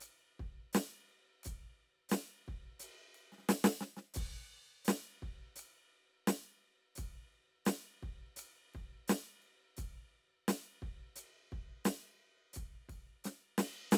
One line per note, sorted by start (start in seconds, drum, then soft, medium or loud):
0.01 hi-hat pedal soft
0.01 ride medium
0.40 kick soft
0.40 ride soft
0.73 snare loud
0.73 hi-hat pedal medium
0.73 ride medium
1.10 ride soft
1.44 kick soft
1.44 hi-hat pedal medium
1.44 ride soft
2.10 snare loud
2.10 hi-hat pedal medium
2.10 ride medium
2.47 kick soft
2.47 ride soft
2.80 hi-hat pedal medium
2.80 ride soft
3.02 ride soft
3.15 ride soft
3.33 snare soft
3.39 snare soft
3.43 snare soft
3.47 snare soft
3.49 snare loud
3.49 hi-hat pedal medium
3.65 snare loud
3.81 snare medium
3.97 snare soft
4.14 kick medium
4.14 hi-hat pedal medium
4.14 crash soft
4.85 snare loud
4.85 hi-hat pedal medium
4.85 ride medium
5.23 kick soft
5.56 hi-hat pedal medium
5.56 ride medium
6.28 snare loud
6.28 hi-hat pedal medium
6.28 ride medium
6.96 kick soft
6.96 hi-hat pedal medium
6.96 ride medium
7.33 ride soft
7.66 snare loud
7.66 hi-hat pedal medium
7.66 ride medium
8.03 kick soft
8.03 ride soft
8.37 hi-hat pedal medium
8.37 ride medium
8.74 kick soft
8.74 ride soft
9.08 snare loud
9.08 hi-hat pedal medium
9.08 ride medium
9.42 ride soft
9.77 kick soft
9.77 hi-hat pedal soft
9.77 ride soft
10.49 snare loud
10.49 hi-hat pedal medium
10.49 ride medium
10.83 kick soft
11.16 hi-hat pedal medium
11.16 ride soft
11.52 kick soft
11.52 ride soft
11.85 snare loud
11.85 hi-hat pedal medium
11.85 ride soft
12.54 kick soft
12.54 hi-hat pedal medium
12.54 ride soft
12.89 kick soft
12.89 ride soft
13.25 snare medium
13.25 hi-hat pedal medium
13.25 ride soft
13.58 snare loud
13.58 ride medium
13.92 snare loud
13.92 hi-hat pedal medium
13.92 ride medium